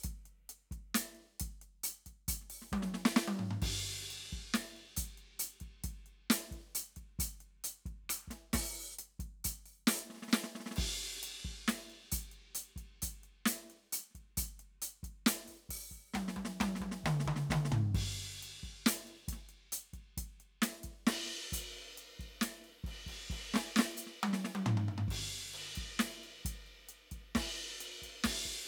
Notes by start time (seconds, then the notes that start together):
0.01 kick, closed hi-hat, hi-hat pedal
0.25 closed hi-hat
0.49 closed hi-hat
0.71 kick, closed hi-hat
0.94 closed hi-hat, snare
1.15 closed hi-hat
1.40 kick, closed hi-hat
1.61 closed hi-hat
1.83 closed hi-hat
2.06 kick, closed hi-hat
2.28 closed hi-hat, kick
2.41 snare
2.50 open hi-hat
2.62 snare
2.72 kick, high tom
2.82 snare
2.94 snare
3.05 snare
3.16 snare
3.28 closed hi-hat, high tom
3.39 floor tom
3.51 floor tom
3.62 kick, ride
4.10 closed hi-hat
4.32 kick, closed hi-hat
4.54 snare, closed hi-hat
4.76 closed hi-hat
4.96 closed hi-hat, kick
5.17 closed hi-hat
5.39 closed hi-hat
5.60 kick, closed hi-hat
5.84 kick, closed hi-hat
6.06 closed hi-hat
6.30 closed hi-hat, snare
6.51 kick, closed hi-hat
6.75 closed hi-hat
6.96 kick, closed hi-hat
7.19 closed hi-hat, kick
7.40 closed hi-hat
7.64 closed hi-hat
7.86 kick, closed hi-hat
8.04 kick
8.09 closed hi-hat, cross-stick
8.28 kick, snare, closed hi-hat
8.53 open hi-hat, kick, snare
8.94 hi-hat pedal
8.99 closed hi-hat
9.19 kick, closed hi-hat
9.44 closed hi-hat, kick
9.65 open hi-hat
9.87 open hi-hat, snare
10.10 snare
10.14 snare
10.17 snare
10.22 snare
10.28 snare, hi-hat pedal
10.33 snare
10.43 snare
10.55 snare
10.60 snare
10.66 snare
10.71 snare
10.76 kick, snare, ride
11.23 closed hi-hat
11.45 kick, closed hi-hat
11.68 snare, closed hi-hat
11.90 closed hi-hat
12.04 snare
12.12 closed hi-hat, kick
12.31 closed hi-hat
12.47 snare
12.55 closed hi-hat
12.76 kick, closed hi-hat
13.02 closed hi-hat, kick
13.23 closed hi-hat
13.46 closed hi-hat, snare
13.70 closed hi-hat
13.92 closed hi-hat
14.11 snare
14.15 kick, closed hi-hat
14.37 closed hi-hat, kick
14.59 closed hi-hat
14.82 closed hi-hat
15.03 kick, closed hi-hat
15.26 closed hi-hat, snare
15.48 kick, open hi-hat
15.69 kick, open hi-hat
15.91 kick, open hi-hat
16.14 kick, snare, high tom
16.28 snare
16.36 kick, high tom
16.45 snare
16.60 kick, snare, hi-hat pedal, high tom
16.75 snare
16.81 kick, high tom
16.91 snare
17.04 kick, snare, hi-hat pedal, mid tom
17.20 snare
17.26 kick, mid tom
17.36 snare
17.49 kick, snare, mid tom
17.65 snare
17.71 kick, floor tom
17.94 kick, ride
18.02 kick
18.42 closed hi-hat
18.63 kick, closed hi-hat
18.86 closed hi-hat, snare
19.07 closed hi-hat
19.28 kick, closed hi-hat
19.32 snare
19.49 closed hi-hat
19.72 closed hi-hat
19.93 kick, closed hi-hat
20.17 kick, closed hi-hat
20.40 closed hi-hat
20.62 snare, closed hi-hat
20.83 kick, closed hi-hat
21.07 snare, crash
21.52 closed hi-hat, kick
21.74 closed hi-hat
21.97 closed hi-hat
22.19 kick, closed hi-hat
22.41 snare, closed hi-hat
22.64 closed hi-hat
22.84 kick, crash
23.06 kick, ride
23.30 kick, crash
23.54 snare
23.56 snare
23.76 snare
23.79 snare
23.97 hi-hat pedal
24.07 snare
24.23 high tom
24.33 snare
24.44 snare
24.55 closed hi-hat, high tom
24.66 floor tom
24.77 floor tom
24.88 floor tom
24.98 floor tom
25.08 kick, ride
25.54 crash
25.75 kick, closed hi-hat
25.99 snare, closed hi-hat
26.23 closed hi-hat
26.45 kick, closed hi-hat
26.66 closed hi-hat
26.89 closed hi-hat
27.11 kick, closed hi-hat
27.35 kick, snare, crash
27.56 closed hi-hat
27.80 closed hi-hat
28.02 kick, closed hi-hat
28.24 kick, snare, hi-hat pedal, ride
28.45 kick
28.62 hi-hat pedal